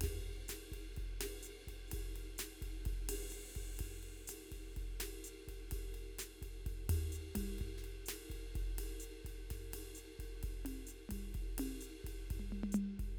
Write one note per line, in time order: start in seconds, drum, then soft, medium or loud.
0.01 snare soft
0.01 ride medium
0.04 kick soft
0.04 snare soft
0.32 snare soft
0.49 snare soft
0.49 hi-hat pedal medium
0.49 ride medium
0.72 kick soft
0.72 ride soft
0.77 kick soft
0.93 hi-hat pedal soft
0.93 ride soft
0.98 kick soft
1.04 kick soft
1.21 snare soft
1.21 ride medium
1.43 hi-hat pedal medium
1.43 ride soft
1.68 kick soft
1.68 ride soft
1.73 kick soft
1.88 snare soft
1.88 hi-hat pedal soft
1.88 ride medium
1.94 kick soft
1.99 kick soft
2.16 ride soft
2.28 snare soft
2.38 snare soft
2.38 hi-hat pedal medium
2.38 ride medium
2.62 kick soft
2.62 ride soft
2.67 kick soft
2.86 kick soft
2.86 ride soft
2.93 kick soft
3.09 ride loud
3.09 crash medium
3.31 hi-hat pedal medium
3.31 ride soft
3.56 kick soft
3.56 ride soft
3.62 kick soft
3.62 snare soft
3.77 kick soft
3.77 hi-hat pedal soft
3.77 ride medium
3.87 kick soft
4.03 ride soft
4.28 snare soft
4.28 hi-hat pedal loud
4.28 ride medium
4.52 kick soft
4.52 ride soft
4.57 kick soft
4.72 hi-hat pedal soft
4.77 kick soft
4.77 ride soft
4.82 kick soft
5.00 snare soft
5.00 ride medium
5.24 hi-hat pedal medium
5.24 ride soft
5.48 kick soft
5.48 ride soft
5.53 kick soft
5.68 snare soft
5.68 hi-hat pedal soft
5.68 ride medium
5.73 kick soft
5.78 kick soft
5.95 ride soft
6.19 snare soft
6.19 hi-hat pedal medium
6.19 ride medium
6.42 kick soft
6.42 ride soft
6.48 kick soft
6.67 kick soft
6.67 ride soft
6.73 kick soft
6.90 floor tom medium
6.90 ride medium
7.12 hi-hat pedal medium
7.36 kick soft
7.36 mid tom medium
7.36 ride medium
7.43 kick soft
7.59 kick soft
7.59 ride soft
7.68 kick soft
7.78 snare soft
7.84 ride soft
8.06 snare soft
8.06 hi-hat pedal medium
8.06 ride medium
8.30 kick soft
8.30 ride soft
8.36 kick soft
8.56 kick soft
8.56 ride soft
8.62 kick soft
8.78 snare soft
8.78 ride medium
9.00 hi-hat pedal medium
9.00 ride soft
9.25 kick soft
9.25 ride soft
9.30 kick soft
9.51 kick soft
9.51 snare soft
9.51 ride medium
9.57 kick soft
9.72 snare soft
9.72 ride medium
9.95 hi-hat pedal medium
9.95 ride soft
10.19 kick soft
10.19 ride soft
10.25 kick soft
10.43 kick soft
10.43 ride soft
10.50 kick soft
10.65 high tom medium
10.65 ride medium
10.87 hi-hat pedal medium
10.87 ride soft
11.09 kick soft
11.09 mid tom medium
11.09 ride medium
11.17 kick soft
11.35 kick soft
11.35 ride soft
11.41 kick soft
11.58 high tom medium
11.58 ride medium
11.81 hi-hat pedal medium
11.81 ride soft
12.05 kick soft
12.05 ride medium
12.10 kick soft
12.31 kick soft
12.31 ride soft
12.37 kick soft
12.37 mid tom soft
12.53 mid tom medium
12.64 mid tom medium
12.72 hi-hat pedal medium
12.72 mid tom loud
13.00 kick soft
13.00 ride soft
13.05 kick soft